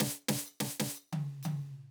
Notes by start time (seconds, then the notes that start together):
0.00 snare
0.19 hi-hat pedal
0.28 snare
0.45 hi-hat pedal
0.60 snare
0.80 snare
0.95 hi-hat pedal
1.13 high tom
1.43 hi-hat pedal, high tom